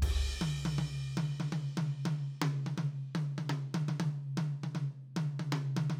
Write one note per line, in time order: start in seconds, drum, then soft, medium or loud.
0.02 kick medium
0.02 ride loud
0.41 high tom loud
0.65 high tom loud
0.78 high tom loud
1.17 high tom loud
1.40 high tom loud
1.52 high tom loud
1.77 high tom loud
2.05 high tom loud
2.42 high tom loud
2.66 high tom medium
2.78 high tom loud
3.15 high tom loud
3.38 high tom loud
3.49 high tom loud
3.74 high tom loud
3.88 high tom loud
4.00 high tom loud
4.37 high tom loud
4.63 high tom medium
4.75 high tom loud
5.16 high tom loud
5.39 high tom loud
5.52 high tom loud
5.77 high tom loud
5.90 high tom loud